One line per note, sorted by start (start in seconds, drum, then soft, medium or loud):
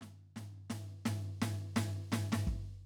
0.01 snare soft
0.01 floor tom soft
0.36 snare soft
0.36 floor tom medium
0.70 snare medium
0.70 floor tom medium
1.05 snare medium
1.05 floor tom loud
1.42 snare medium
1.42 floor tom loud
1.76 snare loud
1.76 floor tom loud
2.09 snare medium
2.09 floor tom loud
2.09 hi-hat pedal soft
2.32 snare medium
2.32 floor tom loud
2.47 kick medium